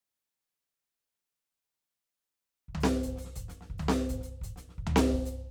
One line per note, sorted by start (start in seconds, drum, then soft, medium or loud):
2.68 kick soft
2.75 floor tom loud
2.80 snare loud
2.80 hi-hat pedal soft
3.03 closed hi-hat medium
3.03 kick soft
3.16 snare soft
3.16 hi-hat pedal medium
3.25 snare soft
3.36 closed hi-hat medium
3.36 kick soft
3.48 snare soft
3.48 hi-hat pedal medium
3.61 snare soft
3.70 kick soft
3.78 floor tom loud
3.78 hi-hat pedal soft
3.88 snare loud
4.09 closed hi-hat medium
4.09 kick soft
4.20 snare soft
4.20 hi-hat pedal medium
4.41 closed hi-hat medium
4.41 kick soft
4.56 snare soft
4.56 hi-hat pedal medium
4.69 snare soft
4.78 kick soft
4.87 floor tom loud
4.96 snare loud
5.13 kick soft
5.25 hi-hat pedal medium